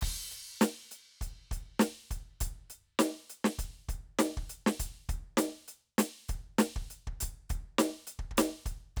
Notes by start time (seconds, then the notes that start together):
0.01 kick, hi-hat pedal, crash
0.31 closed hi-hat
0.61 closed hi-hat, snare
0.91 closed hi-hat
1.21 closed hi-hat, kick
1.51 closed hi-hat, kick
1.79 closed hi-hat, snare
2.11 closed hi-hat, kick
2.40 closed hi-hat, kick
2.70 closed hi-hat
2.99 closed hi-hat, snare
3.29 closed hi-hat
3.44 snare
3.58 closed hi-hat, kick
3.89 closed hi-hat, kick
4.19 closed hi-hat, snare
4.37 kick
4.49 closed hi-hat
4.66 snare
4.79 closed hi-hat, kick
5.09 closed hi-hat, kick
5.37 closed hi-hat, snare
5.68 closed hi-hat
5.98 closed hi-hat, snare
6.29 closed hi-hat, kick
6.58 closed hi-hat, snare
6.76 kick
6.90 closed hi-hat
7.07 kick
7.20 closed hi-hat, kick
7.50 closed hi-hat, kick
7.78 closed hi-hat, snare
8.07 closed hi-hat
8.19 kick
8.31 kick
8.37 closed hi-hat, snare
8.66 closed hi-hat, kick
8.96 kick, crash